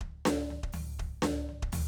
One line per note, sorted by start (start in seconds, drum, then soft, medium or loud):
0.01 kick medium
0.01 floor tom medium
0.25 snare loud
0.25 floor tom medium
0.51 floor tom medium
0.63 kick medium
0.73 open hi-hat medium
0.73 floor tom loud
0.99 kick medium
0.99 floor tom medium
1.22 snare loud
1.22 floor tom medium
1.49 floor tom soft
1.62 kick medium
1.72 open hi-hat medium
1.72 floor tom loud